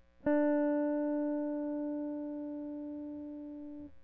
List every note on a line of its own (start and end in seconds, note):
0.27 3.88 D4